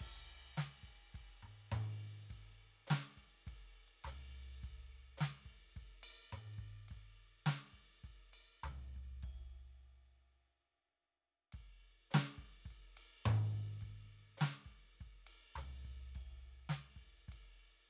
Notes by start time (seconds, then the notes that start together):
0.01 kick, crash
0.58 snare, hi-hat pedal, ride
0.84 kick, ride
1.15 kick, ride
1.43 high tom, ride
1.72 hi-hat pedal, high tom, ride
2.31 kick, ride
2.88 snare, hi-hat pedal
2.93 ride
3.18 kick, ride
3.48 kick, ride
3.75 ride
3.89 ride
4.05 floor tom, hi-hat pedal, ride
4.64 kick, ride
5.18 snare, hi-hat pedal
5.22 ride
5.46 kick
5.51 ride
5.77 kick, ride
6.04 ride bell
6.33 hi-hat pedal, high tom
6.59 kick
6.89 kick, ride
7.47 snare, hi-hat pedal, ride
7.74 kick
8.05 kick, ride
8.34 ride bell
8.64 floor tom, hi-hat pedal
8.97 kick
9.24 kick, crash
11.53 kick, ride
12.11 snare, hi-hat pedal, ride
12.39 kick
12.66 kick
12.71 ride
12.98 ride
13.26 hi-hat pedal, high tom
13.54 kick
13.82 kick, ride
14.38 snare, hi-hat pedal, ride
14.66 kick
15.01 kick
15.28 ride
15.56 floor tom, hi-hat pedal
15.86 kick
16.16 kick, crash
16.70 snare, hi-hat pedal, ride
16.97 kick
17.29 kick, ride